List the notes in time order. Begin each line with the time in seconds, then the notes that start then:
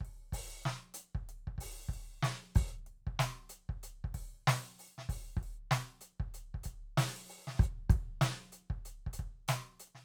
0.01 kick
0.05 open hi-hat
0.33 open hi-hat, kick
0.45 kick
0.62 snare, hi-hat pedal
0.94 closed hi-hat
1.15 kick
1.29 closed hi-hat
1.48 kick
1.58 open hi-hat, kick
1.89 kick
1.94 open hi-hat
2.23 snare
2.55 open hi-hat, kick
2.87 closed hi-hat
3.07 kick
3.19 closed hi-hat, snare
3.50 closed hi-hat
3.69 kick
3.83 closed hi-hat
4.04 kick
4.15 kick, open hi-hat
4.48 open hi-hat, snare
4.79 open hi-hat
4.98 snare
5.09 open hi-hat, kick
5.37 kick
5.43 open hi-hat
5.71 closed hi-hat, snare
6.01 closed hi-hat
6.20 kick
6.34 closed hi-hat
6.55 kick
6.64 closed hi-hat, kick
6.98 open hi-hat, snare
7.29 open hi-hat
7.37 open hi-hat
7.48 snare
7.55 snare
7.60 open hi-hat, kick
7.66 hi-hat pedal
7.90 kick, closed hi-hat
8.21 closed hi-hat, snare
8.53 closed hi-hat
8.70 kick
8.86 closed hi-hat
9.07 kick
9.13 closed hi-hat
9.19 kick
9.48 closed hi-hat, snare
9.80 closed hi-hat
9.88 closed hi-hat
9.95 snare